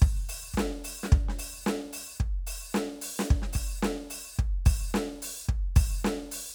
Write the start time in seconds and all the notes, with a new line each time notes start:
0.02 kick
0.29 open hi-hat
0.54 kick, snare, hi-hat pedal
0.85 open hi-hat
1.04 snare, hi-hat pedal
1.12 kick
1.29 snare
1.39 open hi-hat
1.64 snare, hi-hat pedal
1.93 open hi-hat
2.17 kick, hi-hat pedal
2.47 open hi-hat
2.72 snare, hi-hat pedal
3.02 open hi-hat
3.20 snare
3.26 hi-hat pedal
3.31 kick
3.42 snare
3.53 open hi-hat, kick
3.79 hi-hat pedal
3.83 snare
4.11 open hi-hat
4.36 kick, hi-hat pedal
4.66 open hi-hat, kick
4.91 snare, hi-hat pedal
5.23 open hi-hat
5.45 kick, hi-hat pedal
5.76 open hi-hat, kick
6.01 hi-hat pedal
6.05 snare
6.32 open hi-hat